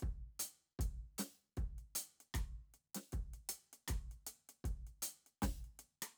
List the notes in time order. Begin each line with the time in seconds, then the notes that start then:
0.01 kick, closed hi-hat
0.40 closed hi-hat
0.80 kick, closed hi-hat
1.19 closed hi-hat, snare
1.58 kick, closed hi-hat
1.79 closed hi-hat
1.96 closed hi-hat
2.21 closed hi-hat
2.35 kick, cross-stick, closed hi-hat
2.75 closed hi-hat
2.95 snare, closed hi-hat
3.13 kick, closed hi-hat
3.34 closed hi-hat
3.50 closed hi-hat
3.74 closed hi-hat
3.88 kick, cross-stick, closed hi-hat
4.12 closed hi-hat
4.27 closed hi-hat
4.50 closed hi-hat
4.65 kick, closed hi-hat
4.87 closed hi-hat
5.03 closed hi-hat
5.27 closed hi-hat
5.43 kick, snare, closed hi-hat
5.65 closed hi-hat
5.80 closed hi-hat
6.03 cross-stick, closed hi-hat